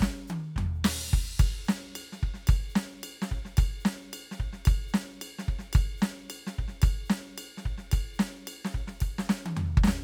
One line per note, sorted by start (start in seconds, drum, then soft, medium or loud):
0.01 kick medium
0.01 snare loud
0.28 hi-hat pedal medium
0.28 high tom loud
0.56 kick medium
0.56 floor tom loud
0.75 hi-hat pedal soft
0.85 snare loud
0.85 crash loud
1.14 kick loud
1.25 snare soft
1.31 snare soft
1.40 kick loud
1.40 ride bell loud
1.65 hi-hat pedal soft
1.69 snare loud
1.96 ride bell loud
2.13 snare medium
2.23 kick medium
2.34 snare soft
2.48 kick loud
2.48 ride bell loud
2.70 hi-hat pedal soft
2.76 snare loud
3.04 ride bell loud
3.22 snare loud
3.32 kick medium
3.45 snare soft
3.58 kick loud
3.58 ride bell loud
3.80 hi-hat pedal soft
3.86 snare loud
4.14 ride bell loud
4.32 snare medium
4.40 kick medium
4.53 snare soft
4.66 kick loud
4.66 ride bell loud
4.89 hi-hat pedal soft
4.94 snare loud
5.22 ride bell loud
5.39 snare medium
5.49 kick medium
5.59 snare medium
5.74 kick loud
5.74 ride bell loud
5.98 hi-hat pedal soft
6.02 snare loud
6.30 ride bell loud
6.47 snare medium
6.59 kick medium
6.68 snare soft
6.82 kick loud
6.82 ride bell loud
7.06 hi-hat pedal soft
7.10 snare loud
7.38 ride bell loud
7.58 snare medium
7.66 kick medium
7.78 snare soft
7.92 kick loud
7.92 ride bell loud
8.14 hi-hat pedal soft
8.20 snare loud
8.48 ride bell loud
8.65 snare medium
8.75 kick medium
8.88 snare medium
9.01 kick medium
9.01 ride bell medium
9.19 snare loud
9.19 hi-hat pedal soft
9.30 snare loud
9.46 high tom loud
9.57 floor tom loud
9.78 kick loud
9.84 snare loud
9.88 snare loud